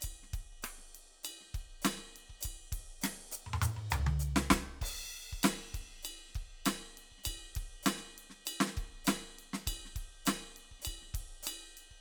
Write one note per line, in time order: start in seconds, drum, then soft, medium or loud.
0.01 kick soft
0.01 hi-hat pedal medium
0.01 ride bell medium
0.12 kick soft
0.23 snare soft
0.28 snare soft
0.33 kick soft
0.33 ride medium
0.40 kick soft
0.62 cross-stick medium
0.62 hi-hat pedal medium
0.62 ride loud
0.78 snare soft
0.95 ride medium
1.23 hi-hat pedal medium
1.23 ride bell loud
1.40 snare soft
1.46 snare soft
1.49 snare soft
1.54 kick soft
1.54 ride soft
1.61 kick soft
1.82 snare medium
1.82 hi-hat pedal medium
1.82 ride bell loud
1.96 snare soft
2.16 ride soft
2.29 kick soft
2.41 kick soft
2.41 hi-hat pedal medium
2.41 ride bell loud
2.51 kick soft
2.72 kick soft
2.72 ride medium
2.79 kick soft
3.01 snare medium
3.01 hi-hat pedal medium
3.01 ride loud
3.31 hi-hat pedal loud
3.46 mid tom medium
3.53 mid tom loud
3.62 hi-hat pedal loud
3.62 mid tom loud
3.73 mid tom medium
3.73 ride soft
3.90 hi-hat pedal medium
3.90 floor tom loud
4.06 high tom loud
4.19 hi-hat pedal medium
4.36 snare loud
4.50 kick soft
4.50 snare loud
4.50 hi-hat pedal medium
4.81 kick soft
4.81 hi-hat pedal medium
4.81 crash medium
4.88 kick soft
5.32 kick soft
5.43 snare loud
5.43 hi-hat pedal medium
5.43 ride bell loud
5.74 kick soft
5.74 ride medium
5.80 kick soft
6.03 hi-hat pedal soft
6.03 ride bell loud
6.29 snare soft
6.35 kick soft
6.35 ride soft
6.42 kick soft
6.65 snare medium
6.65 hi-hat pedal medium
6.65 ride bell loud
6.97 ride soft
7.11 kick soft
7.18 snare soft
7.24 kick soft
7.24 hi-hat pedal medium
7.24 ride bell loud
7.55 kick soft
7.55 ride medium
7.62 kick soft
7.83 snare loud
7.83 hi-hat pedal medium
7.83 ride bell loud
7.97 snare soft
8.18 ride medium
8.30 snare soft
8.45 hi-hat pedal medium
8.45 ride bell loud
8.60 snare loud
8.66 snare soft
8.77 kick medium
8.77 ride soft
8.88 kick soft
9.04 snare loud
9.04 hi-hat pedal medium
9.04 ride bell loud
9.38 ride soft
9.53 snare medium
9.67 kick soft
9.67 hi-hat pedal soft
9.67 ride bell loud
9.74 kick soft
9.85 snare soft
9.96 kick soft
9.96 ride medium
10.02 kick soft
10.25 snare loud
10.25 hi-hat pedal loud
10.25 ride bell loud
10.56 ride soft
10.71 kick soft
10.79 snare soft
10.79 hi-hat pedal medium
10.85 kick soft
10.85 ride bell loud
11.01 snare soft
11.07 snare soft
11.11 kick soft
11.11 snare soft
11.15 ride medium
11.20 kick soft
11.43 cross-stick medium
11.43 hi-hat pedal loud
11.47 ride bell loud
11.77 ride bell soft
11.91 kick soft